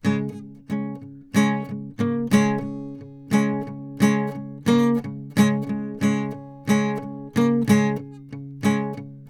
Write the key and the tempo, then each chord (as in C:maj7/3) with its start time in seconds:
C# major, 90 BPM
0.00 C#:(1,5)